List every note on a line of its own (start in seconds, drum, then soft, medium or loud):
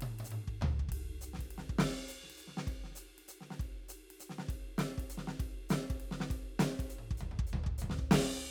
0.01 high tom medium
0.01 ride medium
0.19 high tom medium
0.19 ride medium
0.25 hi-hat pedal medium
0.31 high tom medium
0.31 ride medium
0.48 kick soft
0.61 floor tom loud
0.61 mid tom medium
0.80 kick soft
0.89 kick soft
0.89 ride medium
1.21 hi-hat pedal medium
1.21 ride soft
1.34 snare soft
1.39 kick soft
1.39 ride medium
1.51 ride medium
1.58 snare soft
1.70 kick medium
1.79 snare loud
1.79 crash medium
2.08 hi-hat pedal medium
2.08 ride soft
2.23 snare soft
2.30 ride medium
2.37 hi-hat pedal soft
2.37 ride soft
2.48 snare soft
2.57 snare medium
2.67 kick medium
2.67 ride soft
2.84 snare soft
2.91 snare soft
2.96 hi-hat pedal medium
2.96 ride medium
3.18 ride soft
3.28 hi-hat pedal medium
3.28 ride medium
3.41 snare soft
3.51 snare soft
3.60 kick medium
3.60 ride soft
3.83 snare soft
3.89 hi-hat pedal medium
3.89 ride medium
4.11 ride medium
4.20 hi-hat pedal medium
4.20 ride soft
4.30 snare soft
4.39 snare soft
4.49 kick medium
4.49 ride medium
4.78 snare medium
4.78 ride medium
4.98 kick medium
4.98 ride medium
5.10 hi-hat pedal medium
5.10 ride soft
5.18 snare soft
5.28 snare medium
5.40 kick medium
5.40 ride medium
5.69 snare loud
5.69 hi-hat pedal medium
5.69 ride soft
5.90 kick medium
5.90 ride soft
6.00 ride soft
6.11 snare medium
6.20 snare medium
6.30 kick medium
6.30 hi-hat pedal soft
6.30 ride medium
6.60 snare loud
6.60 hi-hat pedal medium
6.60 ride medium
6.79 kick medium
6.79 ride medium
6.90 hi-hat pedal medium
6.90 ride soft
6.99 high tom medium
7.11 kick medium
7.17 floor tom medium
7.17 hi-hat pedal soft
7.31 mid tom medium
7.39 kick medium
7.47 hi-hat pedal soft
7.53 floor tom loud
7.64 kick medium
7.64 high tom medium
7.78 floor tom medium
7.78 hi-hat pedal medium
7.90 snare medium
7.99 kick medium
8.11 snare loud
8.11 crash loud